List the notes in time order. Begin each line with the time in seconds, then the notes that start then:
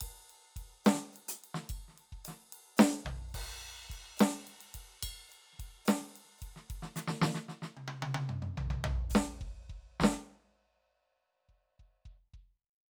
0.01 kick, ride
0.07 kick
0.30 ride
0.56 kick, ride
0.62 kick
0.85 snare, hi-hat pedal, ride
0.94 snare
1.13 hi-hat pedal, ride
1.29 open hi-hat
1.44 ride
1.55 snare
1.63 snare
1.69 kick, ride bell
1.77 kick
1.88 snare
1.94 snare, ride
2.00 snare
2.12 kick
2.25 snare, hi-hat pedal, ride
2.53 ride
2.77 kick, snare, hi-hat pedal, ride
3.05 kick, floor tom
3.29 hi-hat pedal
3.35 kick, crash
3.41 kick
3.89 kick, snare, ride
4.17 snare, hi-hat pedal, ride
4.46 snare, hi-hat pedal, ride
4.61 ride
4.73 kick, hi-hat pedal, ride
5.03 kick, ride bell
5.09 kick
5.28 hi-hat pedal, ride
5.53 snare
5.60 kick, ride
5.85 snare, hi-hat pedal, ride
6.00 snare
6.16 ride
6.24 snare
6.38 kick, hi-hat pedal, ride
6.56 snare
6.70 kick, ride
6.76 kick
6.83 snare
6.96 snare, hi-hat pedal
7.08 snare
7.22 snare
7.35 snare
7.49 snare
7.62 snare
7.77 high tom
7.88 high tom
8.03 high tom
8.15 high tom
8.29 mid tom
8.42 mid tom
8.58 floor tom
8.70 floor tom
8.84 floor tom
9.10 kick, hi-hat pedal
9.15 kick, snare
9.41 kick
9.48 kick
9.70 kick
10.00 kick, snare
10.04 snare
10.12 cross-stick
11.49 kick
11.80 kick
12.06 kick
12.34 kick